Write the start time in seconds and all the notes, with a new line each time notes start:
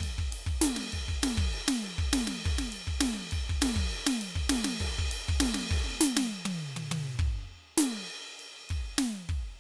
0.01 kick, ride
0.19 kick
0.33 ride
0.47 kick
0.62 snare, ride
0.77 snare
0.84 snare
0.93 kick, ride
1.09 kick
1.23 snare, ride
1.38 kick
1.54 ride
1.69 snare
1.83 ride
1.99 kick
2.14 snare, ride
2.28 snare
2.45 kick, ride
2.59 snare
2.73 ride
2.88 kick
3.01 snare, ride
3.14 snare
3.21 snare
3.32 kick, ride
3.50 kick
3.62 snare, ride
3.77 kick
3.92 ride
4.07 snare
4.22 ride
4.36 kick
4.50 snare, ride
4.65 snare
4.81 kick, ride
4.99 kick
5.12 ride
5.29 kick
5.41 snare, ride
5.55 snare
5.62 snare
5.71 kick, ride
5.85 snare
5.91 snare
6.02 snare, hi-hat pedal
6.17 snare
6.46 high tom
6.77 mid tom
6.92 mid tom
7.20 kick
7.78 snare, ride
8.11 ride
8.40 ride
8.70 kick, ride
8.99 snare, ride
9.30 kick, ride